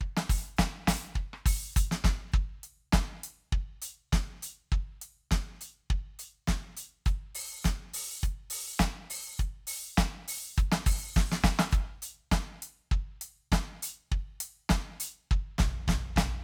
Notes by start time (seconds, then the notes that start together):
0.01 kick
0.17 snare
0.30 open hi-hat, kick
0.57 kick, snare, hi-hat pedal
0.88 open hi-hat, kick, snare
1.14 kick, hi-hat pedal
1.34 cross-stick
1.46 open hi-hat, kick
1.74 closed hi-hat, kick, hi-hat pedal
1.92 snare
2.05 kick, snare
2.32 kick, hi-hat pedal
2.64 closed hi-hat
2.93 kick, snare
3.24 closed hi-hat
3.53 kick
3.82 closed hi-hat
4.13 kick, snare
4.43 closed hi-hat
4.73 kick, ride
5.02 closed hi-hat
5.31 kick, snare
5.62 closed hi-hat
5.91 kick
6.20 closed hi-hat
6.48 kick, snare
6.77 closed hi-hat
7.06 kick, hi-hat pedal
7.35 open hi-hat
7.65 kick, snare, hi-hat pedal
7.94 open hi-hat
8.23 kick, hi-hat pedal
8.51 open hi-hat
8.80 kick, snare, hi-hat pedal
9.11 open hi-hat
9.40 kick, hi-hat pedal
9.68 open hi-hat
9.97 kick, snare, hi-hat pedal
10.28 open hi-hat
10.57 kick, hi-hat pedal
10.72 snare
10.87 open hi-hat, kick
11.17 kick, snare
11.32 snare
11.44 kick, snare
11.60 snare
11.72 kick, hi-hat pedal
12.03 closed hi-hat
12.32 kick, snare
12.63 closed hi-hat
12.92 kick
13.22 closed hi-hat
13.52 kick, snare
13.83 closed hi-hat
14.12 kick, crash
14.41 closed hi-hat
14.70 kick, snare
15.01 closed hi-hat
15.32 kick
15.59 kick, snare, floor tom
15.88 kick, snare, floor tom
16.17 kick, snare, floor tom